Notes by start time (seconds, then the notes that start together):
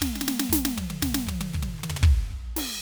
0.01 kick, snare, hi-hat pedal
0.16 snare
0.21 snare
0.28 snare
0.40 snare
0.50 kick, snare, hi-hat pedal
0.65 snare
0.77 kick, high tom
0.90 high tom
1.02 kick, snare, hi-hat pedal
1.15 snare
1.27 kick, high tom
1.41 high tom
1.53 kick, hi-hat pedal, high tom
1.63 high tom
1.69 kick
1.76 percussion
1.83 mid tom
1.90 floor tom
1.95 floor tom, ride
2.03 kick
2.31 kick
2.57 snare, crash